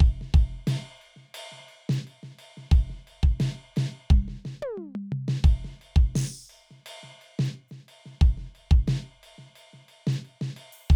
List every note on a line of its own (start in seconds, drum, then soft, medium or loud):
0.01 kick loud
0.01 ride soft
0.08 hi-hat pedal soft
0.22 snare soft
0.35 kick loud
0.35 ride soft
0.68 snare loud
0.68 hi-hat pedal medium
0.68 ride loud
0.97 hi-hat pedal soft
1.02 ride bell soft
1.17 snare soft
1.35 hi-hat pedal medium
1.35 ride loud
1.53 snare soft
1.61 snare soft
1.69 ride soft
1.90 snare loud
1.90 hi-hat pedal medium
2.08 ride soft
2.24 snare soft
2.39 ride medium
2.58 snare soft
2.72 kick loud
2.72 ride soft
2.90 snare soft
3.08 ride soft
3.24 kick loud
3.41 snare loud
3.41 ride medium
3.77 snare loud
3.77 ride medium
4.11 kick loud
4.11 mid tom loud
4.29 snare soft
4.46 snare medium
4.63 high tom loud
4.78 mid tom medium
4.96 mid tom loud
5.13 floor tom loud
5.29 snare loud
5.45 kick loud
5.45 ride bell medium
5.65 snare soft
5.82 ride bell soft
5.97 kick loud
6.16 snare loud
6.16 crash loud
6.50 ride soft
6.71 snare soft
6.87 hi-hat pedal medium
6.87 ride loud
7.04 snare soft
7.22 ride soft
7.40 snare loud
7.45 hi-hat pedal medium
7.69 snare soft
7.69 hi-hat pedal soft
7.89 ride bell medium
8.06 snare soft
8.22 kick loud
8.22 ride bell soft
8.38 snare soft
8.56 ride bell soft
8.72 kick loud
8.88 snare loud
8.88 ride bell medium
9.24 ride medium
9.39 snare soft
9.56 hi-hat pedal soft
9.56 ride bell medium
9.74 snare soft
9.89 ride soft
10.08 snare loud
10.13 hi-hat pedal medium
10.25 ride bell soft
10.42 snare medium
10.57 ride medium
10.73 open hi-hat medium
10.91 kick loud
10.91 ride medium